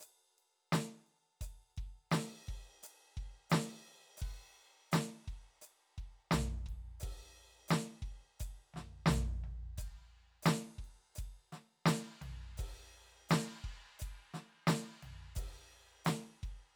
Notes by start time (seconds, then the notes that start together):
0.01 hi-hat pedal, ride
0.39 ride
0.73 snare, hi-hat pedal, ride
1.07 ride
1.42 kick, hi-hat pedal, ride
1.77 kick, ride
2.12 snare, hi-hat pedal, crash
2.48 kick, ride
2.84 hi-hat pedal, ride
3.18 kick, ride
3.50 snare, hi-hat pedal, crash
3.85 ride
4.18 hi-hat pedal, crash
4.22 kick
4.92 snare, hi-hat pedal, ride
5.28 kick, ride
5.62 hi-hat pedal, ride
5.98 kick, ride
6.32 snare, floor tom, hi-hat pedal
6.67 kick, ride
7.01 kick, hi-hat pedal, crash
7.69 snare, hi-hat pedal, ride
8.03 kick, ride
8.40 kick, hi-hat pedal, ride
8.74 snare, floor tom
9.07 snare, floor tom
9.11 hi-hat pedal
9.44 floor tom
9.78 kick, hi-hat pedal, ride
10.43 snare, hi-hat pedal, ride
10.79 kick
10.85 ride
11.16 kick, hi-hat pedal, ride
11.53 snare, ride
11.86 snare, hi-hat pedal, ride
12.22 floor tom, ride
12.58 kick, hi-hat pedal, crash
13.30 snare, hi-hat pedal, ride
13.65 kick
14.00 kick, hi-hat pedal, ride
14.34 snare, ride
14.68 snare, hi-hat pedal, ride
15.03 floor tom, ride
15.36 kick, hi-hat pedal, crash
16.05 snare, hi-hat pedal, ride
16.44 kick, ride